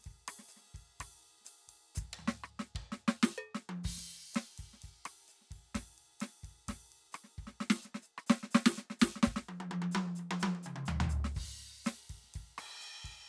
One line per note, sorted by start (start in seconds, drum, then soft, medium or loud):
0.01 snare soft
0.01 hi-hat pedal soft
0.01 ride soft
0.06 kick soft
0.11 kick soft
0.28 cross-stick medium
0.28 ride loud
0.39 snare soft
0.48 hi-hat pedal medium
0.53 snare soft
0.53 ride soft
0.61 snare soft
0.64 snare soft
0.66 snare soft
0.75 kick soft
0.75 ride soft
0.98 kick soft
0.98 cross-stick medium
0.98 hi-hat pedal soft
0.98 ride medium
1.23 ride soft
1.41 snare soft
1.45 hi-hat pedal medium
1.45 ride medium
1.68 kick soft
1.68 ride medium
1.95 kick soft
1.95 hi-hat pedal loud
2.04 kick soft
2.13 floor tom loud
2.19 floor tom soft
2.28 snare medium
2.44 cross-stick medium
2.60 snare medium
2.75 kick soft
2.75 floor tom loud
2.81 kick soft
2.92 snare medium
3.08 snare loud
3.23 snare loud
3.38 percussion loud
3.55 snare medium
3.69 high tom medium
3.84 kick soft
3.84 hi-hat pedal medium
3.84 crash medium
3.97 kick soft
3.97 snare soft
4.34 snare medium
4.34 hi-hat pedal medium
4.34 ride medium
4.58 kick soft
4.58 ride medium
4.64 kick soft
4.74 snare soft
4.82 kick soft
4.82 hi-hat pedal soft
4.82 ride soft
4.89 kick soft
5.06 cross-stick medium
5.06 ride medium
5.28 hi-hat pedal medium
5.28 ride soft
5.41 snare soft
5.51 kick soft
5.51 ride soft
5.56 kick soft
5.75 kick soft
5.75 snare medium
5.75 hi-hat pedal soft
5.75 ride medium
5.81 kick soft
5.98 ride soft
6.20 snare medium
6.20 hi-hat pedal medium
6.20 ride medium
6.44 kick soft
6.44 ride soft
6.49 kick soft
6.67 kick soft
6.67 snare medium
6.67 hi-hat pedal soft
6.67 ride medium
6.74 kick soft
6.92 ride soft
7.13 cross-stick medium
7.13 hi-hat pedal medium
7.13 ride medium
7.24 snare soft
7.38 kick soft
7.44 kick soft
7.44 snare soft
7.61 snare medium
7.70 snare loud
7.82 snare soft
7.82 hi-hat pedal medium
7.95 snare medium
8.03 hi-hat pedal medium
8.18 cross-stick medium
8.27 snare loud
8.27 hi-hat pedal medium
8.43 snare soft
8.51 snare loud
8.51 hi-hat pedal medium
8.66 snare loud
8.75 snare soft
8.75 hi-hat pedal medium
8.90 snare soft
9.00 kick soft
9.00 snare loud
9.00 hi-hat pedal medium
9.16 snare soft
9.23 kick soft
9.23 snare loud
9.23 hi-hat pedal medium
9.33 kick soft
9.33 snare medium
9.44 hi-hat pedal soft
9.49 high tom medium
9.61 high tom medium
9.71 high tom loud
9.82 high tom medium
9.92 hi-hat pedal medium
9.92 high tom loud
10.08 high tom soft
10.16 hi-hat pedal medium
10.16 high tom soft
10.31 high tom loud
10.40 hi-hat pedal medium
10.40 high tom loud
10.55 high tom medium
10.63 hi-hat pedal medium
10.63 mid tom medium
10.76 mid tom medium
10.86 floor tom loud
10.86 hi-hat pedal medium
11.00 floor tom loud
11.10 kick soft
11.10 hi-hat pedal medium
11.25 snare medium
11.35 kick soft
11.35 hi-hat pedal medium
11.35 crash medium
11.85 snare medium
11.85 hi-hat pedal medium
11.85 ride medium
12.10 kick soft
12.10 ride medium
12.15 kick soft
12.24 snare soft
12.27 snare soft
12.34 kick soft
12.34 hi-hat pedal soft
12.34 ride medium
12.41 kick soft
12.58 cross-stick medium
12.58 ride medium
12.81 hi-hat pedal medium
12.81 ride soft
13.05 kick soft
13.05 ride soft